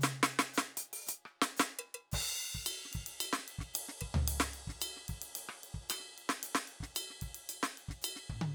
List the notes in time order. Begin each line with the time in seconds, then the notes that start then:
0.01 snare, hi-hat pedal
0.23 snare
0.39 snare
0.54 hi-hat pedal
0.58 snare
0.77 closed hi-hat
0.93 closed hi-hat
1.07 closed hi-hat, hi-hat pedal
1.25 cross-stick
1.42 snare
1.57 snare, hi-hat pedal
1.79 percussion
1.94 percussion
2.12 kick, hi-hat pedal, crash
2.19 kick
2.55 kick, snare
2.65 hi-hat pedal, ride bell
2.85 snare
2.91 snare, ride
2.94 kick, snare
3.01 kick
3.06 ride
3.20 hi-hat pedal, ride bell
3.33 snare
3.39 snare
3.48 ride
3.59 kick, snare
3.65 kick
3.74 hi-hat pedal, ride
3.89 snare
4.01 kick, percussion
4.14 floor tom
4.28 hi-hat pedal, ride
4.40 snare
4.53 ride
4.67 kick, snare
4.81 hi-hat pedal, ride bell
4.97 snare
5.08 kick, ride
5.17 snare
5.22 ride
5.35 hi-hat pedal, ride
5.49 cross-stick
5.63 ride
5.74 kick
5.89 cross-stick, hi-hat pedal, ride bell
6.00 snare
6.18 ride
6.29 snare
6.43 hi-hat pedal, ride
6.55 snare
6.66 hi-hat pedal, ride
6.80 kick, snare
6.95 hi-hat pedal, ride bell
7.10 snare
7.19 kick, snare, ride
7.24 snare
7.26 kick, snare
7.28 snare
7.35 ride
7.49 hi-hat pedal, ride bell
7.63 snare
7.77 ride
7.89 kick, snare
8.02 hi-hat pedal, ride bell
8.16 snare
8.30 kick, mid tom
8.35 kick
8.41 high tom